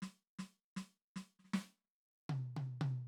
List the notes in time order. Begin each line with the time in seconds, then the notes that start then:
0.02 snare
0.39 snare
0.76 snare
1.16 snare
1.39 snare
1.44 snare
1.53 snare
2.29 high tom
2.56 high tom
2.81 high tom